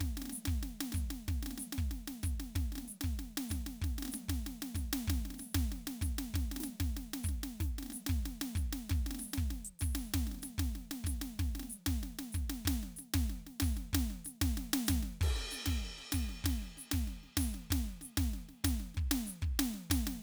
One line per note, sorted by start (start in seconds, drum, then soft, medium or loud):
0.01 kick soft
0.01 snare medium
0.18 snare soft
0.22 snare soft
0.26 snare soft
0.30 snare soft
0.30 hi-hat pedal loud
0.46 kick soft
0.46 snare medium
0.63 snare soft
0.81 snare medium
0.93 kick soft
0.93 snare soft
0.93 hi-hat pedal medium
1.11 snare soft
1.29 kick soft
1.29 snare soft
1.43 snare soft
1.47 snare soft
1.51 snare soft
1.58 snare soft
1.58 hi-hat pedal medium
1.73 snare medium
1.79 kick soft
1.92 snare soft
2.08 snare medium
2.24 kick soft
2.24 snare soft
2.24 hi-hat pedal medium
2.40 snare soft
2.56 kick soft
2.56 snare soft
2.73 snare soft
2.76 snare soft
2.79 snare soft
2.85 snare soft
2.85 hi-hat pedal medium
3.02 kick soft
3.02 snare medium
3.20 snare soft
3.38 snare medium
3.50 kick soft
3.50 snare soft
3.50 hi-hat pedal medium
3.67 snare soft
3.82 kick soft
3.82 snare soft
3.99 snare soft
4.03 snare soft
4.06 snare soft
4.08 snare soft
4.12 snare soft
4.12 hi-hat pedal medium
4.29 kick soft
4.29 snare medium
4.47 snare soft
4.63 snare medium
4.75 kick soft
4.75 snare soft
4.75 hi-hat pedal medium
4.93 snare medium
5.08 kick soft
5.08 snare medium
5.26 snare soft
5.31 snare soft
5.35 snare soft
5.39 snare soft
5.39 hi-hat pedal medium
5.55 kick medium
5.55 snare medium
5.72 snare soft
5.88 snare medium
6.02 kick soft
6.02 snare soft
6.02 hi-hat pedal medium
6.19 snare medium
6.35 kick soft
6.35 snare medium
6.52 snare soft
6.57 snare soft
6.61 snare soft
6.61 hi-hat pedal medium
6.64 snare soft
6.81 kick soft
6.81 snare medium
6.97 snare soft
7.14 snare medium
7.24 kick soft
7.24 hi-hat pedal medium
7.29 snare soft
7.44 snare medium
7.61 kick soft
7.61 snare soft
7.79 snare soft
7.83 snare soft
7.87 snare soft
7.91 snare soft
7.93 snare soft
7.93 hi-hat pedal medium
8.07 kick medium
8.07 snare medium
8.26 snare soft
8.42 snare medium
8.56 kick soft
8.56 snare soft
8.56 hi-hat pedal medium
8.64 kick soft
8.73 snare medium
8.90 kick medium
8.90 snare soft
9.07 snare soft
9.11 snare soft
9.15 snare soft
9.19 snare soft
9.19 hi-hat pedal medium
9.34 snare medium
9.38 kick soft
9.51 snare soft
9.65 closed hi-hat medium
9.80 kick soft
9.80 snare soft
9.80 hi-hat pedal medium
9.96 snare medium
10.14 kick soft
10.14 snare medium
10.27 snare soft
10.32 snare soft
10.35 snare soft
10.39 snare soft
10.39 hi-hat pedal medium
10.44 snare soft
10.59 kick soft
10.59 snare medium
10.76 snare soft
10.92 snare medium
11.05 kick soft
11.05 snare soft
11.05 hi-hat pedal medium
11.22 snare medium
11.40 kick soft
11.40 snare soft
11.56 snare soft
11.60 snare soft
11.64 snare soft
11.70 hi-hat pedal medium
11.87 kick soft
11.87 snare medium
12.04 snare soft
12.19 snare medium
12.33 kick soft
12.33 snare soft
12.33 hi-hat pedal medium
12.50 snare medium
12.66 kick soft
12.66 snare medium
12.83 snare soft
12.97 snare soft
12.97 hi-hat pedal medium
13.14 kick medium
13.14 snare medium
13.30 snare soft
13.47 snare soft
13.61 kick medium
13.61 snare medium
13.61 hi-hat pedal medium
13.77 snare soft
13.94 kick soft
13.94 snare medium
14.11 snare soft
14.25 snare soft
14.25 hi-hat pedal loud
14.42 kick medium
14.42 snare medium
14.58 snare soft
14.74 snare medium
14.87 kick soft
14.87 snare medium
14.87 hi-hat pedal medium
15.03 snare soft
15.22 kick medium
15.22 ride medium
15.36 snare soft
15.51 snare soft
15.51 hi-hat pedal medium
15.66 kick soft
15.66 snare medium
15.84 snare soft
15.99 snare soft
16.12 kick soft
16.12 snare medium
16.12 hi-hat pedal medium
16.30 snare soft
16.45 kick soft
16.45 snare medium
16.63 snare soft
16.78 snare soft
16.78 hi-hat pedal medium
16.92 kick soft
16.92 snare medium
17.08 snare soft
17.24 snare soft
17.37 kick soft
17.37 snare medium
17.37 hi-hat pedal medium
17.55 snare soft
17.71 kick soft
17.71 snare medium
17.86 snare soft
18.02 snare soft
18.02 hi-hat pedal medium
18.18 kick soft
18.18 snare medium
18.34 snare soft
18.49 snare soft
18.65 kick soft
18.65 snare medium
18.65 hi-hat pedal medium
18.80 snare soft
18.95 kick soft
18.95 snare soft
19.12 snare medium
19.27 snare soft
19.27 hi-hat pedal medium
19.42 kick soft
19.42 snare soft
19.60 snare medium
19.74 snare soft
19.91 kick soft
19.91 snare medium
19.91 hi-hat pedal medium
20.07 snare medium